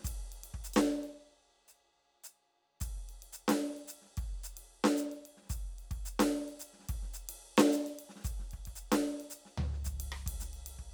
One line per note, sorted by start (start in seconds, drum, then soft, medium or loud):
0.01 kick soft
0.01 snare soft
0.01 hi-hat pedal medium
0.07 ride medium
0.32 ride soft
0.44 ride medium
0.54 kick soft
0.64 hi-hat pedal medium
0.74 snare loud
0.74 ride bell medium
1.03 ride soft
1.68 hi-hat pedal soft
2.24 hi-hat pedal medium
2.80 kick soft
2.80 hi-hat pedal medium
2.80 ride medium
2.96 snare soft
3.09 ride soft
3.22 ride soft
3.33 hi-hat pedal medium
3.48 snare medium
3.48 ride medium
3.51 snare medium
3.77 ride soft
3.88 hi-hat pedal medium
3.88 ride medium
4.02 snare soft
4.05 snare soft
4.17 kick soft
4.17 ride soft
4.27 snare soft
4.44 hi-hat pedal medium
4.44 ride soft
4.57 ride medium
4.84 snare loud
4.84 ride soft
4.97 hi-hat pedal medium
5.12 ride soft
5.25 ride soft
5.37 snare soft
5.42 snare soft
5.45 snare soft
5.49 kick soft
5.49 snare soft
5.49 hi-hat pedal medium
5.54 ride medium
5.79 ride soft
5.91 kick soft
5.91 ride soft
6.05 hi-hat pedal medium
6.19 snare loud
6.19 ride loud
6.48 ride soft
6.60 hi-hat pedal medium
6.60 ride soft
6.73 snare soft
6.79 snare soft
6.83 snare soft
6.89 kick soft
6.89 ride medium
7.02 snare soft
7.14 hi-hat pedal medium
7.14 ride soft
7.29 ride medium
7.57 snare loud
7.57 ride medium
7.72 snare soft
7.72 hi-hat pedal medium
7.86 ride soft
7.99 ride medium
8.09 snare soft
8.16 snare soft
8.20 snare soft
8.24 kick soft
8.24 hi-hat pedal medium
8.24 ride medium
8.39 snare soft
8.51 kick soft
8.51 ride soft
8.65 kick soft
8.65 ride soft
8.76 hi-hat pedal medium
8.92 snare medium
8.92 ride medium
9.20 ride soft
9.30 hi-hat pedal medium
9.30 ride soft
9.45 snare soft
9.58 floor tom loud
9.73 snare soft
9.85 kick soft
9.85 hi-hat pedal medium
9.85 ride soft
10.00 ride medium
10.12 cross-stick medium
10.26 kick soft
10.26 ride medium
10.40 snare soft
10.40 hi-hat pedal medium
10.53 ride soft
10.66 ride medium
10.79 kick soft
10.79 snare soft